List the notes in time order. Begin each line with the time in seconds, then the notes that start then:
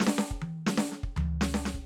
0.00 snare
0.07 snare
0.18 snare
0.31 kick
0.42 high tom
0.66 snare
0.77 snare
0.91 snare
1.03 kick
1.16 floor tom, high tom
1.41 snare
1.54 snare
1.65 snare
1.74 kick